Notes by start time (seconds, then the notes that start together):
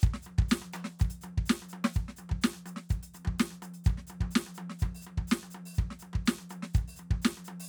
0.01 kick, hi-hat pedal, high tom
0.14 snare
0.22 hi-hat pedal
0.27 high tom
0.38 kick, high tom
0.49 snare, hi-hat pedal
0.62 high tom
0.73 hi-hat pedal, high tom
0.84 snare
0.99 kick, hi-hat pedal, high tom
1.10 open hi-hat
1.21 hi-hat pedal, high tom
1.38 kick
1.46 snare, hi-hat pedal
1.62 high tom
1.69 hi-hat pedal
1.73 high tom
1.84 snare
1.93 kick, hi-hat pedal, high tom
2.08 snare
2.16 hi-hat pedal, high tom
2.29 kick, high tom
2.42 snare, hi-hat pedal
2.54 high tom
2.66 hi-hat pedal, high tom
2.76 snare
2.89 kick, hi-hat pedal, high tom
3.03 open hi-hat
3.14 hi-hat pedal, high tom
3.25 kick, high tom
3.39 snare, hi-hat pedal
3.51 high tom
3.62 hi-hat pedal, high tom
3.74 open hi-hat
3.84 kick, hi-hat pedal, high tom
3.98 snare
4.07 hi-hat pedal, high tom
4.21 kick, high tom
4.31 hi-hat pedal
4.36 snare
4.47 high tom
4.54 hi-hat pedal, high tom
4.70 snare
4.79 kick, hi-hat pedal
4.83 high tom
4.95 open hi-hat
5.02 hi-hat pedal
5.07 high tom
5.18 kick, high tom
5.28 hi-hat pedal
5.32 snare
5.43 high tom
5.50 hi-hat pedal
5.55 high tom
5.66 open hi-hat
5.75 kick, hi-hat pedal
5.79 high tom
5.91 snare
5.99 hi-hat pedal, high tom
6.13 kick, high tom
6.26 snare, hi-hat pedal
6.39 high tom
6.50 hi-hat pedal, high tom
6.63 snare
6.74 kick, hi-hat pedal
6.78 high tom
6.88 open hi-hat
6.96 hi-hat pedal, high tom
7.11 kick, high tom
7.22 snare, hi-hat pedal
7.37 high tom
7.45 hi-hat pedal, high tom
7.60 open hi-hat